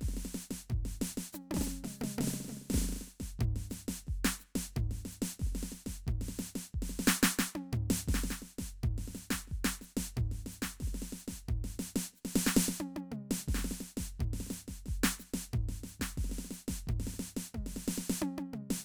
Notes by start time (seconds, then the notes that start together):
0.01 kick, snare
0.08 snare
0.14 snare
0.17 snare
0.25 snare
0.34 snare
0.39 hi-hat pedal
0.51 kick, snare
0.70 kick, floor tom
0.85 snare
1.01 snare, hi-hat pedal
1.17 snare
1.33 hi-hat pedal, high tom
1.51 snare, high tom
1.57 kick, high tom
1.61 snare, hi-hat pedal, high tom
1.66 snare, high tom
1.84 snare, hi-hat pedal, mid tom
2.01 snare, mid tom
2.18 snare, mid tom
2.23 mid tom
2.27 snare, hi-hat pedal, mid tom
2.34 snare
2.40 snare
2.45 snare
2.48 snare, mid tom
2.52 snare
2.57 snare
2.61 snare
2.65 snare
2.70 kick, snare
2.74 snare
2.78 snare
2.82 snare
2.89 snare
2.92 snare
2.96 snare
3.01 snare
3.07 snare, hi-hat pedal
3.20 kick, snare
3.39 kick, floor tom
3.56 snare
3.70 snare, hi-hat pedal
3.88 kick, snare
4.07 kick, snare
4.25 snare
4.39 snare, hi-hat pedal
4.55 kick, snare
4.76 kick, floor tom
4.91 snare
5.05 snare
5.10 hi-hat pedal
5.22 snare
5.39 kick, snare
5.46 snare
5.52 snare
5.55 snare
5.63 snare
5.72 snare, hi-hat pedal
5.86 kick, snare
6.07 kick, floor tom
6.21 snare
6.28 snare
6.37 snare, hi-hat pedal
6.55 snare
6.74 kick
6.82 snare
6.89 snare
6.99 snare
7.07 snare
7.23 snare
7.39 snare
7.55 high tom
7.73 floor tom
7.90 snare
8.08 kick, snare
8.14 snare
8.19 kick, snare
8.24 snare
8.30 snare
8.42 snare
8.58 kick, snare
8.83 kick, floor tom
8.98 snare
9.08 snare
9.15 snare, hi-hat pedal
9.30 kick, snare
9.47 snare
9.51 kick
9.64 snare
9.81 snare, hi-hat pedal
9.97 kick, snare
10.17 kick, floor tom
10.31 snare
10.46 snare
10.50 hi-hat pedal
10.62 kick, snare
10.80 kick, snare
10.87 snare
10.93 snare
11.02 snare
11.12 snare
11.17 hi-hat pedal
11.28 kick, snare
11.48 kick, floor tom
11.64 snare
11.79 snare, hi-hat pedal
11.96 snare
12.13 snare, hi-hat pedal
12.25 snare
12.36 snare
12.46 snare
12.56 snare
12.68 snare
12.80 high tom
12.96 high tom
13.12 mid tom
13.31 snare
13.48 kick, snare
13.54 snare
13.58 snare
13.64 snare
13.71 snare
13.80 snare, hi-hat pedal
13.97 kick, snare
14.20 kick, floor tom
14.33 snare
14.40 snare
14.46 snare
14.50 snare, hi-hat pedal
14.68 kick, snare
14.86 kick, snare
15.04 snare
15.19 snare, hi-hat pedal
15.34 kick, snare
15.53 kick, floor tom
15.69 snare
15.83 snare, hi-hat pedal
16.00 kick, snare
16.17 kick, snare
16.24 snare
16.29 snare
16.31 snare
16.38 snare
16.45 snare
16.51 snare, hi-hat pedal
16.68 kick, snare
16.87 kick, floor tom
17.00 snare
17.07 snare
17.14 snare
17.18 snare, hi-hat pedal
17.37 snare
17.54 kick, mid tom
17.66 snare
17.88 snare
17.98 snare
18.10 snare
18.22 high tom
18.38 high tom
18.53 mid tom
18.70 snare